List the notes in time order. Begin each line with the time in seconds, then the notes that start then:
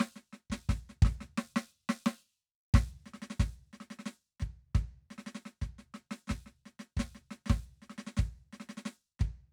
0.01 snare
0.17 snare
0.34 snare
0.51 kick, snare
0.70 kick, snare
0.90 snare
1.03 kick, snare
1.22 snare
1.39 snare
1.57 snare
1.90 snare
2.07 snare
2.75 kick, snare
3.07 snare
3.14 snare
3.23 snare
3.31 snare
3.41 kick, snare
3.74 snare
3.81 snare
4.00 snare
4.07 snare
4.41 kick, snare
4.76 kick, snare
5.11 snare
5.19 snare
5.27 snare
5.36 snare
5.46 snare
5.62 kick, snare
5.79 snare
5.95 snare
6.12 snare
6.28 snare
6.30 kick, snare
6.47 snare
6.67 snare
6.80 snare
6.98 kick, snare
7.00 snare
7.16 snare
7.32 snare
7.47 snare
7.51 kick, snare
7.83 snare
7.91 snare
7.99 snare
8.08 snare
8.18 kick, snare
8.54 snare
8.61 snare
8.70 snare
8.78 snare
8.86 snare
9.20 kick, snare